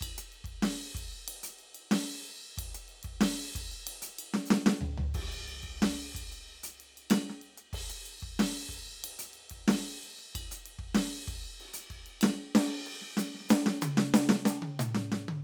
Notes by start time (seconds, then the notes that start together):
0.01 kick, ride bell
0.18 closed hi-hat
0.32 closed hi-hat, ride
0.44 kick, ride
0.62 snare, crash
0.95 kick, ride
1.12 closed hi-hat
1.28 ride
1.43 closed hi-hat
1.59 ride
1.75 ride bell
1.91 snare, crash
2.26 ride
2.43 closed hi-hat
2.58 kick, ride
2.75 closed hi-hat
2.88 ride
3.03 kick, ride
3.21 snare, crash
3.55 kick, ride bell
3.72 closed hi-hat
3.87 ride
4.02 closed hi-hat
4.19 ride bell
4.34 snare
4.46 hi-hat pedal
4.51 snare
4.66 snare
4.81 floor tom
4.98 floor tom
5.14 kick, ride
5.32 closed hi-hat
5.48 ride
5.63 kick, ride bell
5.82 snare, crash
6.15 kick, ride bell
6.32 closed hi-hat
6.49 ride
6.63 closed hi-hat
6.80 ride
6.97 ride bell
7.10 snare, ride bell
7.30 snare
7.42 ride
7.58 closed hi-hat
7.73 kick, crash
7.90 closed hi-hat
8.06 ride bell
8.20 kick, floor tom, ride
8.39 snare, crash
8.69 kick, ride
8.73 cross-stick, floor tom
8.88 closed hi-hat
9.04 ride
9.19 closed hi-hat
9.33 ride
9.50 kick, ride
9.68 snare, crash
10.03 ride
10.19 closed hi-hat
10.35 kick, ride bell
10.51 closed hi-hat
10.66 ride
10.79 kick
10.95 snare, crash
11.28 kick, ride
11.44 closed hi-hat
11.60 ride
11.74 closed hi-hat
11.90 kick, ride
12.06 ride
12.21 snare, ride bell
12.55 snare, ride
12.86 crash
13.01 snare
13.17 snare, hi-hat pedal
13.34 snare
13.40 snare
13.45 snare, hi-hat pedal
13.51 snare
13.66 snare
13.81 hi-hat pedal, high tom
13.97 snare
14.14 snare, hi-hat pedal
14.29 snare
14.45 snare, hi-hat pedal
14.62 high tom
14.79 hi-hat pedal, mid tom
14.95 snare
15.12 snare
15.28 high tom